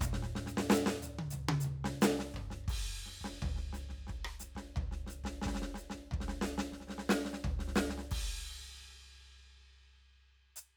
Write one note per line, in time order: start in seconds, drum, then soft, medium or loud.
0.01 kick soft
0.01 hi-hat pedal medium
0.01 mid tom medium
0.10 kick soft
0.10 snare medium
0.23 snare soft
0.35 snare medium
0.46 snare soft
0.46 hi-hat pedal soft
0.57 snare medium
0.70 snare loud
0.74 hi-hat pedal medium
0.86 snare loud
1.02 floor tom soft
1.02 hi-hat pedal medium
1.19 high tom medium
1.31 floor tom medium
1.31 hi-hat pedal medium
1.49 high tom loud
1.60 hi-hat pedal medium
1.65 floor tom soft
1.85 snare medium
2.02 snare loud
2.02 hi-hat pedal medium
2.19 snare medium
2.34 kick soft
2.34 floor tom medium
2.51 snare soft
2.64 kick medium
2.64 cross-stick soft
2.70 crash medium
3.06 snare soft
3.21 kick soft
3.21 snare medium
3.42 kick soft
3.42 floor tom medium
3.56 snare soft
3.73 snare soft
3.73 hi-hat pedal soft
3.89 kick soft
3.89 snare soft
4.07 kick soft
4.07 snare soft
4.25 cross-stick medium
4.40 snare soft
4.40 hi-hat pedal medium
4.55 kick soft
4.55 snare soft
4.76 kick soft
4.76 floor tom medium
4.92 snare soft
5.07 snare soft
5.07 hi-hat pedal soft
5.24 kick soft
5.24 snare medium
5.42 kick soft
5.42 snare medium
5.47 snare medium
5.53 snare soft
5.55 snare medium
5.62 snare medium
5.75 snare soft
5.75 hi-hat pedal soft
5.90 snare medium
5.95 kick soft
6.11 kick soft
6.11 floor tom medium
6.21 snare soft
6.28 snare medium
6.42 snare medium
6.46 hi-hat pedal soft
6.58 kick soft
6.58 snare medium
6.72 snare soft
6.80 snare soft
6.87 snare soft
6.90 snare medium
6.98 snare medium
7.09 snare loud
7.25 snare medium
7.33 snare soft
7.44 kick soft
7.44 floor tom medium
7.54 kick soft
7.59 snare soft
7.68 snare soft
7.75 snare loud
7.75 hi-hat pedal soft
7.90 snare soft
7.98 snare soft
8.11 kick medium
8.11 crash medium
10.56 hi-hat pedal medium